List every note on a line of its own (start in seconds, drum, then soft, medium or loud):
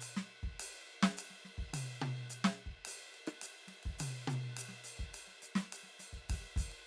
0.01 hi-hat pedal medium
0.01 ride medium
0.17 snare medium
0.43 kick soft
0.60 hi-hat pedal loud
0.60 ride loud
1.03 snare loud
1.17 hi-hat pedal medium
1.17 ride loud
1.30 snare soft
1.45 snare soft
1.58 kick soft
1.74 hi-hat pedal medium
1.74 high tom medium
1.74 ride loud
2.02 high tom loud
2.30 hi-hat pedal medium
2.30 ride medium
2.45 snare medium
2.66 kick soft
2.85 hi-hat pedal medium
2.85 ride loud
3.15 ride soft
3.27 cross-stick medium
3.27 ride medium
3.42 hi-hat pedal loud
3.42 ride loud
3.68 snare soft
3.68 ride medium
3.83 kick soft
3.83 ride medium
3.99 hi-hat pedal medium
3.99 high tom medium
3.99 ride loud
4.28 hi-hat pedal medium
4.28 high tom loud
4.57 hi-hat pedal loud
4.57 ride loud
4.69 snare soft
4.84 hi-hat pedal medium
4.84 ride soft
4.98 kick soft
4.98 ride soft
5.14 hi-hat pedal medium
5.14 ride medium
5.28 snare soft
5.42 hi-hat pedal medium
5.42 ride medium
5.56 snare loud
5.56 ride medium
5.73 hi-hat pedal medium
5.73 ride loud
5.83 snare soft
6.00 snare soft
6.00 hi-hat pedal medium
6.00 ride soft
6.13 kick soft
6.13 ride soft
6.29 kick medium
6.29 hi-hat pedal soft
6.29 ride loud
6.42 snare soft
6.56 kick medium
6.56 hi-hat pedal medium
6.56 ride medium
6.72 ride medium